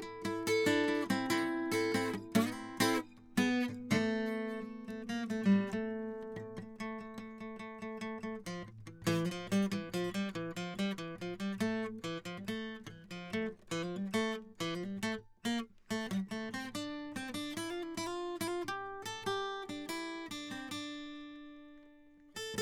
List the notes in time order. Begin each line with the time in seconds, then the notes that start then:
0.00 E4
0.26 E4 A4
0.48 E4 A4
0.67 D4 E4
0.90 E4
1.11 C4 E4
1.31 C4 E4
1.73 C4 E4 A4
1.95 C4 E4
2.36 A#3 D4
2.48 C4 E4
2.81 C4 E4 A4
3.38 B3 G#4
3.93 A3
4.61 A3
4.90 A3
5.10 A#3
5.31 A3
5.45 G3
5.74 A3
6.60 A3
6.81 A3
7.00 A3
7.19 A3
7.42 A3
7.61 A3
7.84 A3
8.02 A3
8.24 A3
8.47 F3
8.88 E3
9.08 E3
9.27 F3
9.53 G3
9.73 E3
9.95 F3
10.16 G3
10.36 E3
10.58 F3
10.80 G3
10.99 E3
11.23 F3
11.41 G3
11.62 A3
12.05 E3
12.26 F3
12.39 G3
12.49 A3
12.88 E3
13.12 F3
13.35 A3
13.72 E3
13.85 F3
13.98 G3
14.15 A3
14.62 E3
14.76 F3
14.85 G3
15.04 A3
15.46 A#3
15.92 A3
16.32 A3
16.55 C4
16.76 D4
17.17 C4
17.35 D4
17.59 E4
17.72 F4
17.84 E4
17.99 E4
18.08 F4
18.42 E4
18.52 F4
18.69 G4
19.07 A4
19.28 G4
19.70 D4
19.90 E4
20.32 D4
20.73 D4
22.38 A4